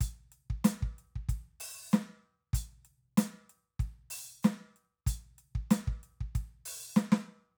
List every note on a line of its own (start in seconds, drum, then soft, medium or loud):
0.01 closed hi-hat loud
0.01 kick medium
0.32 closed hi-hat soft
0.50 kick medium
0.65 closed hi-hat loud
0.65 snare loud
0.83 kick medium
0.99 closed hi-hat soft
1.16 kick soft
1.29 kick medium
1.29 closed hi-hat medium
1.61 open hi-hat loud
1.91 snare loud
1.91 closed hi-hat medium
1.91 hi-hat pedal medium
2.54 closed hi-hat loud
2.54 kick medium
2.85 closed hi-hat soft
3.18 closed hi-hat loud
3.18 snare loud
3.50 closed hi-hat soft
3.80 kick medium
3.80 closed hi-hat soft
4.11 open hi-hat loud
4.43 snare loud
4.43 closed hi-hat medium
4.43 hi-hat pedal medium
4.76 closed hi-hat soft
5.07 closed hi-hat loud
5.07 kick medium
5.39 closed hi-hat soft
5.56 kick medium
5.71 closed hi-hat loud
5.71 snare loud
5.88 kick medium
6.04 closed hi-hat soft
6.21 kick medium
6.36 kick medium
6.36 closed hi-hat medium
6.66 open hi-hat loud
6.97 snare loud
6.97 hi-hat pedal medium
7.12 snare loud